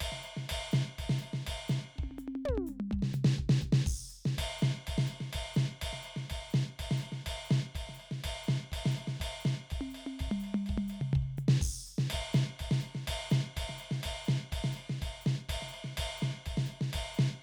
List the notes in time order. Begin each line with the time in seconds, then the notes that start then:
0.01 kick, ride bell
0.07 kick
0.12 snare
0.23 hi-hat pedal, ride
0.37 snare
0.50 kick, ride bell
0.57 kick
0.71 snare, hi-hat pedal
0.99 kick, ride bell
1.04 kick
1.10 snare
1.19 hi-hat pedal
1.23 ride
1.34 snare
1.47 kick, ride bell
1.54 kick
1.68 snare, hi-hat pedal
1.96 kick, high tom
2.04 kick, high tom
2.12 high tom
2.19 hi-hat pedal, high tom
2.28 high tom
2.36 high tom
2.45 kick, high tom
2.56 kick, high tom
2.67 hi-hat pedal, mid tom
2.80 mid tom
2.92 kick, mid tom
3.00 kick, snare
3.14 floor tom, hi-hat pedal
3.25 snare
3.39 kick, floor tom
3.50 snare
3.62 kick, floor tom, hi-hat pedal
3.73 snare
3.87 kick, crash
3.99 kick
4.09 hi-hat pedal
4.26 snare
4.39 kick, ride bell
4.44 kick
4.59 hi-hat pedal
4.63 snare
4.87 kick, ride bell
4.94 kick
4.98 snare
5.07 hi-hat pedal, ride
5.21 snare
5.33 kick, ride bell
5.54 snare, hi-hat pedal
5.82 kick, ride bell
5.93 snare
6.03 hi-hat pedal, ride
6.17 snare
6.30 kick, ride bell
6.37 kick
6.51 hi-hat pedal
6.55 snare
6.80 kick, ride bell
6.85 kick
6.92 snare
6.97 hi-hat pedal
7.02 ride
7.13 snare
7.27 kick, ride bell
7.32 kick
7.45 hi-hat pedal
7.51 snare
7.75 kick, ride bell
7.81 kick
7.89 snare
7.95 hi-hat pedal
8.00 ride
8.12 snare
8.24 kick, ride bell
8.44 hi-hat pedal
8.49 snare
8.72 kick, ride bell
8.78 kick
8.86 snare
8.91 hi-hat pedal
8.97 ride
9.08 snare
9.21 kick, ride bell
9.26 kick
9.41 hi-hat pedal
9.46 snare
9.71 kick, ride bell
9.78 kick, high tom
9.91 hi-hat pedal
9.95 ride
10.07 high tom
10.20 kick, ride bell
10.27 kick
10.32 mid tom
10.40 hi-hat pedal
10.44 ride bell
10.55 mid tom
10.67 kick, ride bell
10.76 kick, mid tom
10.88 hi-hat pedal, ride
11.02 floor tom
11.14 kick, floor tom
11.23 kick
11.38 floor tom, hi-hat pedal
11.49 snare
11.62 kick, crash
11.67 kick
11.74 kick
11.86 hi-hat pedal
11.99 snare
12.10 kick, ride bell
12.20 kick
12.33 snare, hi-hat pedal
12.60 kick, ride bell
12.72 snare
12.81 hi-hat pedal, ride
12.95 snare
13.08 kick, ride bell
13.14 kick
13.30 snare, hi-hat pedal
13.57 kick, ride bell
13.63 kick
13.70 snare
13.78 hi-hat pedal, ride
13.92 snare
14.04 kick, ride bell
14.11 kick
14.25 hi-hat pedal
14.29 snare
14.53 kick, ride bell
14.58 kick
14.65 snare
14.73 hi-hat pedal
14.77 ride
14.90 snare
15.02 kick, ride bell
15.08 kick
15.21 hi-hat pedal
15.27 snare
15.49 kick, ride bell
15.55 kick
15.63 snare
15.69 hi-hat pedal
15.74 ride
15.85 snare
15.98 kick, ride
16.18 hi-hat pedal
16.23 snare
16.46 kick, ride
16.52 kick
16.58 snare
16.66 hi-hat pedal, ride
16.81 snare
16.93 kick, ride bell
17.01 kick, ride
17.14 hi-hat pedal
17.19 snare